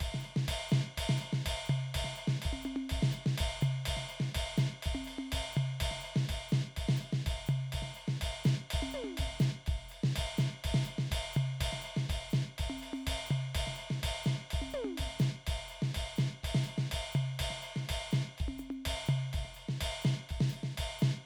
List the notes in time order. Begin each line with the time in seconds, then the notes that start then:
0.01 kick, ride
0.07 kick
0.15 snare
0.20 hi-hat pedal
0.25 ride
0.37 snare
0.48 kick, ride
0.69 snare, hi-hat pedal
0.98 kick, ride bell
1.10 snare
1.18 hi-hat pedal
1.22 ride
1.33 snare
1.46 kick, ride bell
1.53 kick
1.66 hi-hat pedal
1.70 floor tom
1.95 kick, ride
2.02 kick, snare
2.16 hi-hat pedal, ride
2.28 snare
2.42 kick, ride
2.52 kick, high tom
2.63 hi-hat pedal, high tom
2.77 high tom
2.90 kick, ride bell
2.98 kick
3.03 snare
3.12 hi-hat pedal, ride
3.27 snare
3.38 kick, ride
3.48 kick
3.61 hi-hat pedal, floor tom
3.86 kick, ride
3.97 snare
4.09 hi-hat pedal, ride
4.21 snare
4.35 kick, ride
4.43 kick
4.57 snare, hi-hat pedal
4.83 kick, ride
4.93 kick, high tom
5.05 hi-hat pedal, ride
5.19 high tom
5.33 kick, ride
5.39 kick
5.53 hi-hat pedal
5.57 floor tom
5.81 kick, ride
5.88 kick
5.92 snare
6.01 hi-hat pedal
6.05 ride
6.17 snare
6.30 kick, ride bell
6.49 snare, hi-hat pedal
6.77 kick, ride
6.89 snare
6.97 hi-hat pedal
7.01 ride
7.13 snare
7.27 kick, ride bell
7.34 kick
7.47 hi-hat pedal, floor tom
7.73 kick, ride bell
7.83 snare
7.95 hi-hat pedal, ride
8.09 snare
8.22 kick, ride
8.29 kick
8.44 snare, hi-hat pedal
8.71 kick, ride
8.81 kick, high tom
8.91 hi-hat pedal, high tom
9.05 high tom
9.18 kick, ride bell
9.27 kick
9.40 snare, hi-hat pedal
9.67 kick, ride bell
9.76 kick
9.89 hi-hat pedal, ride
10.04 snare
10.16 kick, ride
10.24 kick
10.38 snare, hi-hat pedal
10.65 kick, ride
10.71 kick, snare
10.85 hi-hat pedal, ride
10.99 snare
11.12 kick, ride
11.18 kick
11.33 floor tom, hi-hat pedal
11.61 kick, ride
11.67 kick
11.73 snare
11.82 hi-hat pedal
11.86 ride
11.97 snare
12.10 kick, ride
12.16 kick
12.31 snare, hi-hat pedal
12.59 kick, ride
12.66 kick
12.70 high tom
12.78 hi-hat pedal
12.83 ride
12.94 open hi-hat, high tom
13.07 kick, ride
13.14 kick
13.27 hi-hat pedal
13.31 floor tom
13.55 kick, ride
13.63 kick
13.68 snare
13.75 hi-hat pedal
13.80 ride
13.91 snare
14.04 kick, ride
14.10 kick
14.23 snare, hi-hat pedal
14.51 kick, ride
14.61 kick, high tom
14.71 hi-hat pedal, high tom
14.85 high tom
14.98 kick, ride bell
15.06 kick
15.19 snare, hi-hat pedal
15.47 kick, ride bell
15.55 kick
15.68 hi-hat pedal, ride
15.83 snare
15.95 kick, ride
16.03 kick
16.16 snare, hi-hat pedal
16.44 kick, ride
16.55 snare
16.64 hi-hat pedal, ride
16.79 snare
16.92 kick, ride
16.99 kick
17.13 hi-hat pedal, floor tom
17.40 kick, ride
17.46 kick
17.51 snare
17.62 hi-hat pedal, ride
17.77 snare
17.90 kick, ride
17.96 kick
18.11 snare, hi-hat pedal
18.39 kick, ride
18.47 kick, high tom
18.59 hi-hat pedal, high tom
18.71 closed hi-hat, high tom
18.86 kick, ride
18.93 kick
19.06 floor tom, hi-hat pedal
19.34 kick, ride bell
19.41 kick
19.45 snare
19.55 hi-hat pedal, ride
19.69 snare
19.81 kick, ride
20.02 snare, hi-hat pedal
20.30 kick, ride bell
20.41 snare
20.50 hi-hat pedal, ride
20.64 snare
20.78 kick, ride bell
20.85 kick
20.99 snare, hi-hat pedal